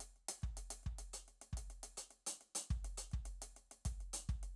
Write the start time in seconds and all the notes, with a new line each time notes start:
0.01 closed hi-hat
0.17 closed hi-hat
0.29 closed hi-hat
0.43 kick, closed hi-hat
0.57 closed hi-hat
0.71 closed hi-hat
0.84 kick, closed hi-hat
0.99 closed hi-hat
1.14 closed hi-hat
1.29 closed hi-hat
1.42 closed hi-hat
1.53 kick
1.58 closed hi-hat
1.71 closed hi-hat
1.84 closed hi-hat
1.98 closed hi-hat
2.11 closed hi-hat
2.27 closed hi-hat
2.41 closed hi-hat
2.56 closed hi-hat
2.71 kick, closed hi-hat
2.85 closed hi-hat
2.98 closed hi-hat
3.12 kick, closed hi-hat
3.26 closed hi-hat
3.42 closed hi-hat
3.57 closed hi-hat
3.72 closed hi-hat
3.86 kick, closed hi-hat
4.01 closed hi-hat
4.14 closed hi-hat
4.29 kick, closed hi-hat
4.44 closed hi-hat